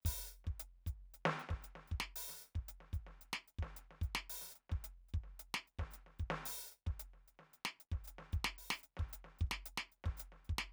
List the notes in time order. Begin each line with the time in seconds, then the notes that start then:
0.02 open hi-hat, kick, hi-hat pedal
0.11 kick
0.31 closed hi-hat
0.44 kick, snare
0.59 closed hi-hat
0.86 closed hi-hat, kick
1.14 closed hi-hat
1.25 snare
1.39 closed hi-hat
1.49 kick, snare
1.62 closed hi-hat, hi-hat pedal
1.75 snare
1.87 closed hi-hat, kick
2.00 snare
2.16 open hi-hat
2.29 snare
2.41 closed hi-hat, hi-hat pedal
2.55 kick, snare
2.68 closed hi-hat
2.80 snare
2.93 closed hi-hat, kick
3.06 snare
3.21 closed hi-hat
3.33 snare
3.48 closed hi-hat
3.58 kick
3.62 snare
3.76 closed hi-hat
3.91 snare
4.01 kick, closed hi-hat
4.15 snare
4.29 open hi-hat
4.41 snare
4.51 closed hi-hat, hi-hat pedal
4.69 kick, snare
4.84 closed hi-hat
5.08 closed hi-hat
5.14 kick
5.24 snare
5.39 closed hi-hat
5.54 snare
5.67 closed hi-hat
5.79 kick, snare
5.91 closed hi-hat, hi-hat pedal
6.06 snare
6.19 closed hi-hat, kick
6.30 snare
6.45 open hi-hat
6.66 hi-hat pedal
6.72 closed hi-hat
6.86 kick, snare
6.99 closed hi-hat
7.13 snare
7.28 closed hi-hat
7.39 snare
7.53 closed hi-hat
7.65 snare
7.80 closed hi-hat
7.92 kick, snare
8.04 closed hi-hat, hi-hat pedal
8.18 snare
8.32 kick, closed hi-hat
8.44 snare
8.58 open hi-hat
8.70 snare
8.78 hi-hat pedal
8.83 closed hi-hat
8.97 kick, snare
9.08 hi-hat pedal
9.13 closed hi-hat
9.24 snare
9.39 closed hi-hat, kick
9.47 kick
9.51 snare
9.66 closed hi-hat
9.77 snare
9.92 closed hi-hat
10.04 kick, snare
10.17 closed hi-hat, hi-hat pedal
10.32 snare
10.45 closed hi-hat
10.49 kick
10.58 snare